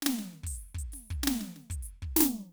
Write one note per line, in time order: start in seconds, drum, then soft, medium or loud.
0.02 snare medium
0.02 hi-hat pedal medium
0.06 snare loud
0.19 snare soft
0.33 snare soft
0.43 open hi-hat medium
0.43 kick soft
0.55 hi-hat pedal medium
0.74 open hi-hat medium
0.74 kick soft
0.92 snare soft
0.92 hi-hat pedal medium
1.10 kick soft
1.23 snare medium
1.27 snare loud
1.41 snare soft
1.56 snare soft
1.70 closed hi-hat medium
1.70 kick soft
1.82 hi-hat pedal medium
2.02 kick soft
2.16 snare loud
2.20 snare loud